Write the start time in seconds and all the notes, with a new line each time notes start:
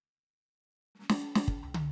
0.95 snare
0.99 snare
1.02 snare
1.10 snare
1.36 snare
1.48 kick
1.63 floor tom
1.74 high tom